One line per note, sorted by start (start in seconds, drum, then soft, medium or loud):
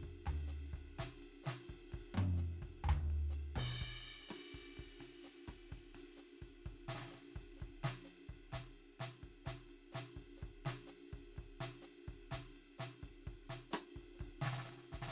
0.01 kick soft
0.01 ride soft
0.09 kick soft
0.26 floor tom medium
0.26 ride medium
0.48 hi-hat pedal medium
0.53 ride soft
0.74 kick soft
0.74 ride soft
0.79 kick soft
0.97 kick soft
0.97 snare medium
0.97 hi-hat pedal soft
0.97 ride medium
1.06 kick soft
1.23 ride soft
1.44 snare medium
1.44 hi-hat pedal medium
1.44 ride medium
1.70 kick soft
1.70 ride soft
1.75 kick soft
1.90 kick soft
1.90 hi-hat pedal soft
1.90 ride medium
2.00 kick soft
2.15 mid tom medium
2.18 mid tom loud
2.38 hi-hat pedal medium
2.38 ride soft
2.63 kick soft
2.63 ride medium
2.68 kick soft
2.85 floor tom loud
2.89 kick soft
2.89 floor tom loud
3.11 ride soft
3.31 hi-hat pedal medium
3.31 ride bell soft
3.56 kick soft
3.56 high tom loud
3.56 crash loud
3.64 kick soft
3.82 kick soft
3.82 ride soft
3.88 kick soft
3.99 snare soft
4.09 ride soft
4.29 cross-stick soft
4.29 snare soft
4.29 hi-hat pedal medium
4.29 ride medium
4.55 kick soft
4.55 ride soft
4.60 kick soft
4.78 kick soft
4.78 ride soft
4.85 kick soft
5.00 snare soft
5.00 ride medium
5.25 hi-hat pedal medium
5.25 ride soft
5.48 kick soft
5.48 cross-stick soft
5.48 snare soft
5.48 ride medium
5.54 kick soft
5.64 snare soft
5.70 kick soft
5.70 hi-hat pedal soft
5.70 ride soft
5.78 kick soft
5.95 snare soft
5.95 ride medium
6.18 hi-hat pedal medium
6.18 ride soft
6.42 kick soft
6.42 ride soft
6.48 kick soft
6.66 kick soft
6.66 ride soft
6.72 kick soft
6.89 snare medium
6.89 ride medium
6.96 snare medium
7.01 snare soft
7.08 snare soft
7.08 hi-hat pedal medium
7.15 snare soft
7.15 ride soft
7.20 snare soft
7.25 snare soft
7.31 snare soft
7.35 kick soft
7.35 snare soft
7.35 ride soft
7.39 kick soft
7.39 snare soft
7.57 hi-hat pedal soft
7.57 ride soft
7.62 kick soft
7.68 kick soft
7.84 snare medium
7.84 ride medium
8.05 hi-hat pedal medium
8.05 ride soft
8.30 kick soft
8.30 ride soft
8.35 kick soft
8.52 kick soft
8.52 snare medium
8.52 hi-hat pedal soft
8.52 ride medium
8.60 kick soft
8.75 ride soft
9.00 snare medium
9.00 hi-hat pedal medium
9.00 ride medium
9.24 kick soft
9.24 ride soft
9.29 kick soft
9.45 kick soft
9.45 snare medium
9.45 hi-hat pedal medium
9.45 ride medium
9.53 kick soft
9.70 ride soft
9.93 snare medium
9.93 hi-hat pedal medium
9.93 ride medium
10.17 kick soft
10.17 ride soft
10.22 kick soft
10.38 hi-hat pedal soft
10.42 kick soft
10.42 ride soft
10.49 kick soft
10.66 snare medium
10.66 ride medium
10.88 hi-hat pedal medium
10.88 ride soft
11.13 kick soft
11.13 ride soft
11.19 kick soft
11.33 hi-hat pedal soft
11.37 kick soft
11.37 ride soft
11.44 kick soft
11.61 snare medium
11.61 ride medium
11.82 hi-hat pedal medium
11.82 ride soft
12.08 kick soft
12.08 ride soft
12.14 kick soft
12.32 kick soft
12.32 snare medium
12.32 ride medium
12.39 kick soft
12.57 ride soft
12.79 snare medium
12.79 hi-hat pedal medium
12.79 ride medium
13.03 kick soft
13.03 ride soft
13.08 kick soft
13.22 hi-hat pedal soft
13.27 kick soft
13.27 ride soft
13.33 kick soft
13.50 snare medium
13.50 ride medium
13.71 cross-stick medium
13.71 hi-hat pedal medium
13.71 ride medium
13.96 kick soft
13.96 ride soft
14.02 kick soft
14.15 hi-hat pedal soft
14.20 kick soft
14.20 ride medium
14.27 kick soft
14.42 snare medium
14.46 snare medium
14.53 snare medium
14.58 snare soft
14.65 snare soft
14.65 hi-hat pedal medium
14.70 snare soft
14.70 ride medium
14.78 snare soft
14.83 snare soft
14.93 kick soft
14.93 snare soft
15.00 kick soft
15.00 snare medium
15.08 snare medium